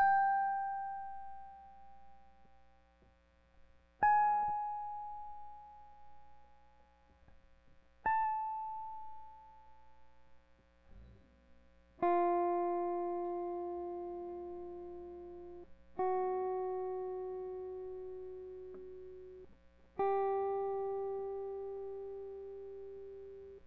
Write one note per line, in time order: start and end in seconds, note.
0.00 1.89 G5
4.03 6.05 G#5
8.06 9.69 A5
12.03 15.64 F4
16.00 19.00 F#4
20.00 23.60 G4